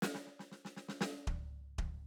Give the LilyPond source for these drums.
\new DrumStaff \drummode { \time 4/4 \tempo 4 = 116 <sn hhp>16 sn16 sn16 sn16 sn16 sn16 sn16 sn16 sn8 <bd tomfh>8 r8 <bd tomfh>8 | }